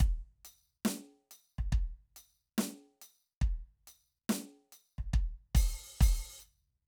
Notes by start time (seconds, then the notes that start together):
0.01 kick, snare
0.46 closed hi-hat
0.86 snare
1.32 closed hi-hat
1.59 kick
1.73 kick, crash, ride
2.17 closed hi-hat
2.59 snare
3.02 closed hi-hat
3.42 kick, snare, crash, ride
3.88 closed hi-hat
4.30 snare
4.73 closed hi-hat
4.99 kick
5.14 kick
5.56 kick, percussion
5.97 kick
6.01 kick, snare, percussion
6.40 hi-hat pedal